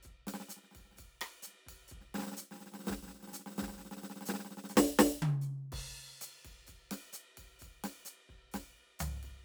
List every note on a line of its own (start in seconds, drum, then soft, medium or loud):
0.01 kick soft
0.01 snare soft
0.01 hi-hat pedal soft
0.01 ride soft
0.10 kick soft
0.27 snare medium
0.27 ride medium
0.34 snare medium
0.40 snare soft
0.48 snare soft
0.48 hi-hat pedal medium
0.48 ride soft
0.56 snare soft
0.63 snare soft
0.71 kick soft
0.71 snare soft
0.71 ride soft
0.78 kick soft
0.78 snare soft
0.85 snare soft
0.91 snare soft
0.95 kick soft
0.95 snare soft
0.95 hi-hat pedal soft
0.95 ride soft
1.03 kick soft
1.21 cross-stick medium
1.21 ride medium
1.42 hi-hat pedal medium
1.47 snare soft
1.53 snare soft
1.66 kick soft
1.66 ride medium
1.71 kick soft
1.88 kick soft
1.88 hi-hat pedal soft
1.96 kick soft
2.01 snare soft
2.14 snare medium
2.18 snare medium
2.21 snare soft
2.21 snare medium
2.27 snare medium
2.32 snare soft
2.36 snare soft
2.36 hi-hat pedal medium
2.41 snare soft
2.51 snare soft
2.54 snare soft
2.56 snare soft
2.60 snare soft
2.66 snare soft
2.72 snare soft
2.74 snare soft
2.79 snare soft
2.84 snare soft
2.84 hi-hat pedal soft
2.87 kick soft
2.87 snare medium
2.91 kick soft
2.91 snare medium
2.97 snare soft
3.02 snare soft
3.07 snare soft
3.09 snare soft
3.14 snare soft
3.19 snare soft
3.23 snare soft
3.27 snare soft
3.32 snare soft
3.32 hi-hat pedal medium
3.33 snare soft
3.39 snare soft
3.46 snare soft
3.50 snare soft
3.55 snare soft
3.58 kick soft
3.58 snare medium
3.63 kick soft
3.63 snare medium
3.68 snare soft
3.72 snare soft
3.77 snare soft
3.79 snare soft
3.85 snare soft
3.91 snare soft
3.97 snare soft
4.02 snare soft
4.03 snare medium
4.10 snare soft
4.16 snare soft
4.21 snare soft
4.25 snare medium
4.25 hi-hat pedal medium
4.34 snare medium
4.39 snare soft
4.45 snare soft
4.51 snare soft
4.57 snare soft
4.64 snare soft
4.69 snare soft
4.69 hi-hat pedal medium
4.75 kick soft
4.75 snare loud
4.99 kick soft
4.99 snare loud
5.22 mid tom loud
5.41 hi-hat pedal soft
5.72 kick soft
5.72 crash medium
5.78 kick soft
6.21 hi-hat pedal medium
6.21 ride medium
6.45 kick soft
6.45 ride soft
6.50 kick soft
6.66 kick soft
6.66 hi-hat pedal soft
6.66 ride soft
6.73 kick soft
6.91 snare medium
6.91 ride medium
7.13 hi-hat pedal medium
7.37 kick soft
7.37 ride soft
7.37 ride medium
7.59 kick soft
7.59 hi-hat pedal soft
7.59 ride soft
7.66 kick soft
7.84 snare medium
7.84 ride medium
8.05 hi-hat pedal medium
8.29 kick soft
8.29 ride soft
8.34 kick soft
8.51 kick soft
8.51 snare medium
8.51 hi-hat pedal soft
8.51 ride medium
8.58 kick soft
8.76 ride soft
8.99 hi-hat pedal medium
8.99 ride medium
8.99 floor tom medium
9.23 kick soft
9.23 ride soft
9.29 kick soft